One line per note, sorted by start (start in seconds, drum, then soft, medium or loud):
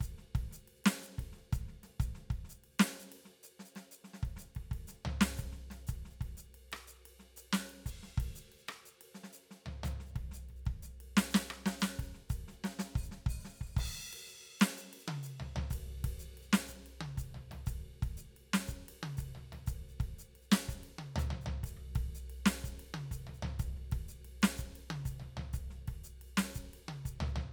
0.01 kick medium
0.01 hi-hat pedal medium
0.01 ride soft
0.18 snare soft
0.35 kick medium
0.35 ride soft
0.51 snare soft
0.51 hi-hat pedal medium
0.68 ride soft
0.76 hi-hat pedal soft
0.85 snare loud
0.85 ride soft
1.02 snare soft
1.02 hi-hat pedal medium
1.19 kick soft
1.19 ride soft
1.33 snare soft
1.37 snare soft
1.53 kick medium
1.53 hi-hat pedal medium
1.53 ride soft
1.69 snare soft
1.84 snare soft
1.84 ride soft
2.00 kick medium
2.00 hi-hat pedal medium
2.00 ride soft
2.15 snare soft
2.31 kick medium
2.31 ride soft
2.45 snare soft
2.50 hi-hat pedal medium
2.64 ride soft
2.73 hi-hat pedal soft
2.80 snare loud
2.80 ride soft
3.00 hi-hat pedal medium
3.12 ride medium
3.22 snare soft
3.22 hi-hat pedal soft
3.44 hi-hat pedal medium
3.44 ride soft
3.60 snare soft
3.66 hi-hat pedal soft
3.76 snare soft
3.76 ride soft
3.92 hi-hat pedal medium
3.92 ride soft
4.05 snare soft
4.14 snare soft
4.23 kick medium
4.23 ride soft
4.37 snare soft
4.37 hi-hat pedal medium
4.56 kick soft
4.56 ride soft
4.72 kick medium
4.72 ride soft
4.88 snare soft
4.88 hi-hat pedal medium
5.06 floor tom loud
5.21 snare loud
5.38 kick soft
5.38 hi-hat pedal medium
5.38 ride medium
5.53 snare soft
5.71 snare soft
5.71 ride soft
5.87 kick medium
5.87 hi-hat pedal medium
5.87 ride soft
6.06 snare soft
6.11 hi-hat pedal soft
6.21 kick medium
6.21 ride soft
6.37 snare soft
6.37 hi-hat pedal medium
6.55 ride soft
6.72 cross-stick medium
6.72 ride medium
6.88 hi-hat pedal medium
7.06 ride medium
7.20 snare soft
7.37 hi-hat pedal medium
7.37 ride medium
7.53 snare loud
7.70 crash soft
7.86 kick soft
7.86 hi-hat pedal medium
7.86 crash soft
8.03 snare soft
8.08 hi-hat pedal soft
8.18 kick medium
8.18 ride medium
8.36 hi-hat pedal medium
8.52 ride soft
8.59 hi-hat pedal soft
8.69 cross-stick medium
8.69 ride soft
8.86 hi-hat pedal medium
9.02 ride medium
9.15 snare soft
9.24 snare soft
9.33 hi-hat pedal medium
9.33 ride soft
9.51 snare soft
9.66 floor tom medium
9.84 floor tom loud
9.84 hi-hat pedal medium
10.00 snare soft
10.07 hi-hat pedal soft
10.16 kick medium
10.16 ride soft
10.32 snare soft
10.32 hi-hat pedal medium
10.49 kick soft
10.49 ride soft
10.56 hi-hat pedal soft
10.66 kick medium
10.66 ride soft
10.83 snare soft
10.83 hi-hat pedal medium
11.01 ride soft
11.17 snare loud
11.31 snare loud
11.31 hi-hat pedal medium
11.51 cross-stick medium
11.66 snare loud
11.80 snare loud
11.80 hi-hat pedal medium
11.99 kick soft
11.99 hi-hat pedal soft
11.99 ride medium
12.15 snare soft
12.30 kick medium
12.30 hi-hat pedal medium
12.30 ride medium
12.48 snare soft
12.48 hi-hat pedal soft
12.64 snare medium
12.80 snare medium
12.80 hi-hat pedal medium
12.96 open hi-hat medium
12.96 kick medium
13.04 hi-hat pedal medium
13.12 snare soft
13.27 open hi-hat medium
13.27 kick medium
13.45 snare soft
13.61 kick soft
13.77 kick medium
13.77 crash loud
13.97 snare soft
14.14 ride medium
14.27 snare soft
14.27 hi-hat pedal soft
14.46 ride soft
14.61 snare loud
14.61 ride soft
14.78 hi-hat pedal medium
14.94 ride medium
14.99 hi-hat pedal soft
15.08 high tom loud
15.23 hi-hat pedal medium
15.23 ride soft
15.40 floor tom medium
15.56 floor tom loud
15.71 kick medium
15.71 hi-hat pedal medium
15.71 ride medium
16.05 kick medium
16.05 ride medium
16.20 hi-hat pedal medium
16.38 ride soft
16.43 hi-hat pedal soft
16.53 snare loud
16.69 kick soft
16.69 hi-hat pedal medium
16.87 ride soft
17.01 high tom loud
17.18 kick soft
17.18 hi-hat pedal medium
17.18 ride soft
17.35 floor tom soft
17.52 floor tom medium
17.52 ride soft
17.67 kick medium
17.67 hi-hat pedal medium
17.67 ride medium
18.03 kick medium
18.03 ride soft
18.18 hi-hat pedal medium
18.37 ride soft
18.54 snare loud
18.54 ride medium
18.68 kick soft
18.68 hi-hat pedal medium
18.89 ride medium
19.03 high tom loud
19.18 kick soft
19.18 hi-hat pedal medium
19.18 ride medium
19.35 floor tom soft
19.53 floor tom medium
19.53 ride soft
19.67 kick medium
19.67 hi-hat pedal medium
19.67 ride medium
19.89 hi-hat pedal soft
20.01 kick medium
20.01 ride soft
20.19 hi-hat pedal medium
20.36 ride soft
20.42 hi-hat pedal soft
20.52 snare loud
20.52 ride medium
20.69 kick soft
20.69 hi-hat pedal medium
20.84 ride soft
20.99 high tom medium
21.16 floor tom loud
21.16 hi-hat pedal medium
21.31 floor tom medium
21.42 hi-hat pedal soft
21.47 floor tom loud
21.64 kick soft
21.64 hi-hat pedal medium
21.64 ride medium
21.77 cross-stick soft
21.96 kick medium
21.96 ride medium
22.15 hi-hat pedal medium
22.30 ride soft
22.38 hi-hat pedal soft
22.46 snare loud
22.46 ride medium
22.64 kick soft
22.64 hi-hat pedal medium
22.80 ride medium
22.87 hi-hat pedal soft
22.95 high tom loud
23.12 kick soft
23.12 hi-hat pedal medium
23.12 ride medium
23.27 floor tom medium
23.34 hi-hat pedal soft
23.43 floor tom loud
23.60 kick medium
23.60 hi-hat pedal medium
23.60 ride soft
23.77 snare soft
23.92 kick medium
23.92 ride medium
24.09 hi-hat pedal medium
24.25 ride soft
24.43 snare loud
24.43 ride medium
24.58 kick soft
24.58 hi-hat pedal medium
24.76 ride soft
24.91 high tom loud
25.06 kick soft
25.06 hi-hat pedal medium
25.06 ride soft
25.20 floor tom medium
25.37 floor tom medium
25.54 kick soft
25.54 hi-hat pedal medium
25.54 ride soft
25.71 snare soft
25.88 kick soft
25.88 ride soft
26.04 hi-hat pedal medium
26.22 ride soft
26.27 hi-hat pedal soft
26.38 snare loud
26.38 ride medium
26.55 kick soft
26.55 hi-hat pedal medium
26.74 hi-hat pedal soft
26.74 ride soft
26.89 high tom loud
27.06 kick soft
27.06 hi-hat pedal medium
27.21 floor tom loud
27.28 hi-hat pedal soft
27.36 floor tom loud